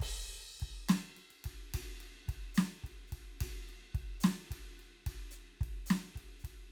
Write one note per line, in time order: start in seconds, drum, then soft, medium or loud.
0.01 kick medium
0.01 crash loud
0.60 kick soft
0.60 ride medium
0.89 snare loud
0.89 hi-hat pedal medium
0.89 ride bell loud
1.16 snare soft
1.16 hi-hat pedal soft
1.16 ride medium
1.31 ride medium
1.45 kick soft
1.45 ride medium
1.74 kick soft
1.74 ride loud
1.80 kick soft
2.01 ride medium
2.26 kick soft
2.26 snare soft
2.26 ride medium
2.31 snare soft
2.55 snare loud
2.55 hi-hat pedal medium
2.55 ride loud
2.84 kick soft
2.84 ride medium
3.03 snare soft
3.07 snare soft
3.07 hi-hat pedal soft
3.12 kick soft
3.12 ride medium
3.41 kick soft
3.41 ride loud
3.48 kick soft
3.69 ride soft
3.95 kick soft
3.95 ride medium
4.01 kick soft
4.21 snare loud
4.21 hi-hat pedal medium
4.21 ride loud
4.51 kick soft
4.51 ride medium
4.72 snare soft
4.77 snare soft
4.77 ride soft
5.07 kick soft
5.07 ride medium
5.31 hi-hat pedal medium
5.31 ride soft
5.61 kick soft
5.61 ride medium
5.68 kick soft
5.87 hi-hat pedal medium
5.91 snare loud
5.91 ride loud
6.02 snare soft
6.16 kick soft
6.16 ride medium
6.38 snare soft
6.38 hi-hat pedal soft
6.44 kick soft
6.44 ride medium